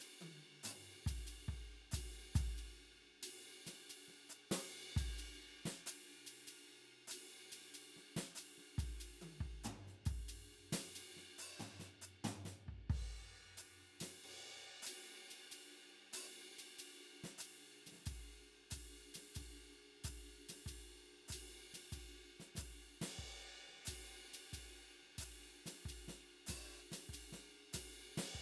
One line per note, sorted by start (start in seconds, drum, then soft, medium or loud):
0.01 ride medium
0.21 high tom medium
0.64 floor tom soft
0.64 hi-hat pedal loud
0.64 ride medium
1.07 kick soft
1.07 ride medium
1.27 ride medium
1.49 kick soft
1.92 kick soft
1.92 hi-hat pedal loud
1.92 ride loud
2.35 open hi-hat medium
2.35 kick medium
2.35 ride medium
2.58 ride soft
3.23 ride loud
3.67 snare soft
3.67 ride medium
3.90 ride medium
4.08 snare soft
4.30 hi-hat pedal medium
4.52 snare medium
4.52 ride loud
4.97 kick soft
4.97 ride medium
5.19 ride medium
5.66 snare medium
5.87 hi-hat pedal loud
5.87 ride medium
6.27 ride medium
6.48 ride medium
7.08 hi-hat pedal medium
7.08 ride loud
7.52 ride medium
7.74 ride medium
7.97 snare soft
8.17 snare medium
8.35 hi-hat pedal medium
8.35 ride medium
8.58 snare soft
8.78 kick soft
8.78 ride medium
9.01 ride medium
9.22 high tom medium
9.41 kick soft
9.64 floor tom medium
9.64 hi-hat pedal medium
9.88 snare soft
10.06 kick soft
10.06 ride medium
10.29 ride medium
10.73 snare medium
10.73 ride loud
10.96 ride medium
11.17 snare soft
11.39 hi-hat pedal medium
11.60 snare soft
11.60 floor tom medium
11.80 snare soft
12.02 hi-hat pedal medium
12.24 snare medium
12.24 floor tom loud
12.45 snare soft
12.68 kick soft
12.90 kick soft
12.90 crash soft
13.58 hi-hat pedal medium
13.58 ride medium
14.01 snare soft
14.01 ride medium
14.24 ride medium
14.83 hi-hat pedal loud
14.87 ride loud
15.31 ride medium
15.52 ride medium
16.13 hi-hat pedal medium
16.13 ride loud
16.59 ride medium
16.79 ride medium
17.24 snare soft
17.38 hi-hat pedal medium
17.38 ride medium
17.87 snare soft
17.87 ride medium
17.92 snare soft
17.96 snare soft
17.99 snare soft
18.04 kick soft
18.04 snare soft
18.04 ride medium
18.71 kick soft
18.71 hi-hat pedal medium
18.71 ride medium
19.15 snare soft
19.15 ride medium
19.35 kick soft
19.35 ride medium
20.04 kick soft
20.04 hi-hat pedal medium
20.04 ride medium
20.49 snare soft
20.49 ride medium
20.66 kick soft
20.66 ride medium
21.28 kick soft
21.28 hi-hat pedal medium
21.33 ride loud
21.74 snare soft
21.74 ride medium
21.92 kick soft
21.92 ride medium
22.40 snare soft
22.56 kick soft
22.56 snare soft
22.56 hi-hat pedal medium
22.56 ride medium
23.02 snare medium
23.02 ride medium
23.19 kick soft
23.69 snare soft
23.74 snare soft
23.77 snare soft
23.79 snare soft
23.85 kick soft
23.85 hi-hat pedal medium
23.85 ride loud
24.34 snare soft
24.34 ride medium
24.53 kick soft
24.53 ride medium
25.03 snare soft
25.18 kick soft
25.18 hi-hat pedal medium
25.18 ride medium
25.66 snare soft
25.66 ride medium
25.86 kick soft
25.86 ride medium
26.08 snare soft
26.47 kick soft
26.47 snare soft
26.47 hi-hat pedal medium
26.47 ride medium
26.92 snare soft
26.92 ride medium
27.09 kick soft
27.14 ride medium
27.33 snare soft
27.73 kick soft
27.73 snare soft
27.73 hi-hat pedal medium
27.73 ride loud
28.18 snare medium
28.18 ride medium
28.35 kick soft